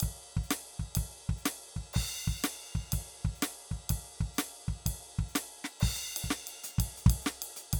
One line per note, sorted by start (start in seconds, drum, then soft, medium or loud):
0.01 kick medium
0.01 ride loud
0.37 kick medium
0.44 hi-hat pedal soft
0.51 snare loud
0.51 ride loud
0.80 kick medium
0.96 kick medium
0.96 ride loud
1.30 kick medium
1.38 hi-hat pedal soft
1.46 snare loud
1.46 ride loud
1.77 kick medium
1.94 kick medium
1.94 crash loud
2.28 kick medium
2.38 hi-hat pedal soft
2.44 snare loud
2.44 ride loud
2.76 kick medium
2.93 kick medium
2.93 ride loud
3.25 kick medium
3.36 hi-hat pedal soft
3.43 snare loud
3.43 ride loud
3.72 kick medium
3.90 kick medium
3.90 ride loud
4.21 kick medium
4.35 hi-hat pedal soft
4.39 snare loud
4.39 ride loud
4.69 kick medium
4.86 kick medium
4.86 ride loud
5.19 kick medium
5.29 hi-hat pedal soft
5.36 snare loud
5.36 ride loud
5.65 snare medium
5.81 kick medium
5.81 crash loud
5.97 closed hi-hat medium
6.17 ride loud
6.24 kick soft
6.31 snare loud
6.48 ride medium
6.64 closed hi-hat loud
6.79 kick medium
6.79 ride loud
6.98 closed hi-hat medium
7.07 kick loud
7.07 ride loud
7.23 hi-hat pedal medium
7.27 snare loud
7.43 ride loud
7.57 closed hi-hat medium
7.73 kick medium
7.73 ride loud